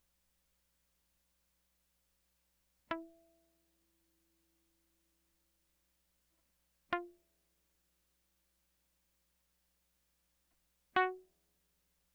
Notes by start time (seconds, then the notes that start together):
2.92 E4
6.93 F4
10.97 F#4